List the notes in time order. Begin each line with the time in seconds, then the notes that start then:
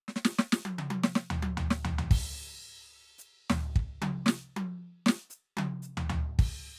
0.08 snare
0.16 snare
0.25 snare
0.39 snare
0.52 snare
0.65 high tom
0.78 mid tom
0.90 high tom
1.04 snare
1.15 snare
1.30 floor tom
1.42 high tom
1.57 floor tom
1.70 snare
1.85 floor tom
1.98 floor tom
2.11 kick, crash
3.18 hi-hat pedal
3.50 snare, floor tom
3.73 kick, hi-hat pedal
4.02 mid tom, high tom
4.26 snare
4.28 snare
4.56 high tom
5.06 snare
5.08 snare
5.30 hi-hat pedal
5.57 mid tom, high tom
5.82 hi-hat pedal
5.97 floor tom
6.10 floor tom
6.39 kick, crash
6.63 crash